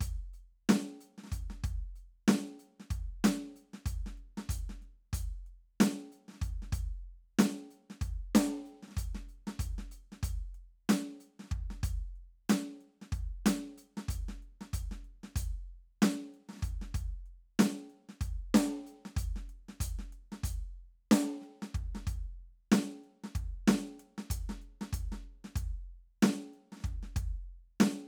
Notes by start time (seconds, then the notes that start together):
0.01 closed hi-hat, kick
0.34 closed hi-hat
0.69 closed hi-hat, snare
1.01 closed hi-hat
1.18 snare
1.24 snare
1.27 snare
1.32 closed hi-hat, kick
1.50 snare
1.64 closed hi-hat, kick
1.96 closed hi-hat
2.28 closed hi-hat, snare
2.60 closed hi-hat
2.80 snare
2.91 closed hi-hat, kick
3.24 closed hi-hat, snare
3.56 closed hi-hat
3.74 snare
3.86 closed hi-hat, kick
4.06 snare
4.18 closed hi-hat
4.38 snare
4.49 closed hi-hat, kick
4.70 snare
4.82 snare, closed hi-hat
5.13 closed hi-hat, kick
5.47 closed hi-hat
5.81 closed hi-hat, snare
6.12 closed hi-hat
6.28 snare
6.32 snare
6.34 snare
6.42 closed hi-hat, kick
6.62 snare
6.73 closed hi-hat, kick
7.39 closed hi-hat, snare
7.71 closed hi-hat
7.90 snare
8.02 closed hi-hat, kick
8.35 closed hi-hat, snare
8.66 closed hi-hat
8.83 snare
8.88 snare
8.91 snare
8.97 closed hi-hat, kick
9.15 snare
9.29 closed hi-hat
9.47 snare
9.60 closed hi-hat, kick
9.78 snare
9.92 closed hi-hat
10.12 snare
10.23 closed hi-hat, kick
10.55 closed hi-hat
10.89 closed hi-hat, snare
11.21 closed hi-hat
11.40 snare
11.44 snare
11.48 kick, snare
11.52 closed hi-hat
11.71 snare
11.84 closed hi-hat, kick
12.16 closed hi-hat
12.50 closed hi-hat, snare
12.81 closed hi-hat
13.02 snare
13.13 closed hi-hat, kick
13.19 ride
13.46 closed hi-hat, snare
13.78 closed hi-hat
13.97 snare
14.09 closed hi-hat, kick
14.29 snare
14.43 closed hi-hat
14.61 snare
14.74 closed hi-hat, kick
14.91 snare
15.05 closed hi-hat
15.24 snare
15.36 closed hi-hat, kick
16.02 closed hi-hat, snare
16.33 snare, closed hi-hat
16.49 snare
16.53 snare
16.57 snare
16.59 kick, snare
16.64 closed hi-hat
16.82 snare
16.95 closed hi-hat, kick
17.26 closed hi-hat
17.59 closed hi-hat, snare
17.90 closed hi-hat
18.09 snare
18.21 closed hi-hat, kick
18.55 closed hi-hat, snare
18.86 closed hi-hat, snare
19.05 snare
19.17 closed hi-hat, kick
19.36 snare
19.50 closed hi-hat
19.69 snare
19.81 closed hi-hat, kick
19.99 snare
20.13 closed hi-hat
20.32 snare
20.44 closed hi-hat, kick
21.12 closed hi-hat, snare
21.42 snare, closed hi-hat
21.63 snare
21.75 kick, closed hi-hat
21.95 snare
22.07 closed hi-hat, kick
22.72 closed hi-hat, snare
23.04 closed hi-hat
23.24 snare
23.35 kick, closed hi-hat
23.68 snare, closed hi-hat
23.99 snare, closed hi-hat
24.18 snare
24.30 kick, closed hi-hat
24.49 snare
24.62 closed hi-hat
24.81 snare
24.93 kick, closed hi-hat
25.12 snare
25.23 closed hi-hat
25.45 snare
25.56 kick, closed hi-hat
26.23 snare, closed hi-hat
26.53 snare, closed hi-hat
26.72 snare
26.77 snare
26.80 snare
26.83 kick, snare, closed hi-hat
27.03 snare
27.16 kick, closed hi-hat
27.80 snare, closed hi-hat